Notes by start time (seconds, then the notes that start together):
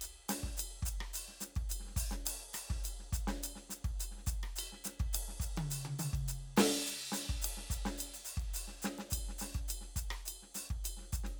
0.01 hi-hat pedal, ride bell
0.28 snare, hi-hat pedal, ride
0.43 kick, snare
0.57 hi-hat pedal, ride bell
0.82 kick, hi-hat pedal
0.88 ride
1.00 cross-stick
1.13 hi-hat pedal, ride bell
1.28 snare
1.40 snare, hi-hat pedal, ride
1.55 kick, ride
1.69 hi-hat pedal, ride bell
1.80 snare
1.84 snare
1.87 snare
1.90 snare
1.96 kick, hi-hat pedal, ride
2.11 snare, ride
2.25 hi-hat pedal, ride
2.53 cross-stick, hi-hat pedal, ride
2.69 kick, snare
2.84 hi-hat pedal, ride bell
2.99 snare
3.12 kick, hi-hat pedal, ride
3.27 snare, ride
3.43 hi-hat pedal, ride bell
3.55 snare
3.69 snare, hi-hat pedal, ride
3.84 kick, ride
3.99 hi-hat pedal, ride bell
4.11 snare
4.15 snare
4.18 snare
4.26 kick, hi-hat pedal, ride
4.43 cross-stick, ride
4.55 hi-hat pedal, ride bell
4.72 snare
4.84 snare, hi-hat pedal, ride
4.99 kick, ride
5.13 hi-hat pedal, ride
5.28 snare
5.39 kick, hi-hat pedal, ride
5.57 open hi-hat, high tom, ride
5.70 hi-hat pedal, ride bell
5.85 high tom
5.99 hi-hat pedal, high tom, ride
6.13 kick, ride
6.28 hi-hat pedal, ride bell
6.56 snare, hi-hat pedal, crash
6.86 hi-hat pedal, ride
7.12 snare, hi-hat pedal
7.25 kick, snare
7.41 hi-hat pedal, ride
7.57 snare
7.70 kick, hi-hat pedal, ride
7.85 snare, ride
7.98 hi-hat pedal, ride bell
8.13 open hi-hat
8.25 hi-hat pedal, ride
8.37 kick, ride
8.53 hi-hat pedal, ride bell
8.67 snare
8.82 snare, hi-hat pedal, ride bell
8.98 snare, ride
9.10 kick, hi-hat pedal, ride bell
9.28 snare
9.38 snare, hi-hat pedal, ride
9.54 kick, ride
9.68 hi-hat pedal, ride bell
9.81 snare
9.96 kick, hi-hat pedal, ride
10.10 cross-stick, ride
10.25 hi-hat pedal, ride bell
10.42 snare
10.54 snare, hi-hat pedal, ride
10.69 kick, ride
10.84 hi-hat pedal, ride bell
10.97 snare
11.00 snare
11.12 kick, hi-hat pedal, ride
11.23 snare, ride